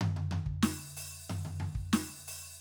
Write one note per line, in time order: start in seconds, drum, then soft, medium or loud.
0.01 floor tom loud
0.01 high tom loud
0.16 floor tom medium
0.16 high tom medium
0.31 floor tom medium
0.31 high tom loud
0.46 kick medium
0.63 open hi-hat loud
0.63 snare loud
0.97 open hi-hat loud
1.30 floor tom loud
1.30 high tom medium
1.45 floor tom medium
1.45 high tom medium
1.60 floor tom medium
1.60 high tom medium
1.75 kick medium
1.93 open hi-hat loud
1.93 snare loud
2.28 open hi-hat loud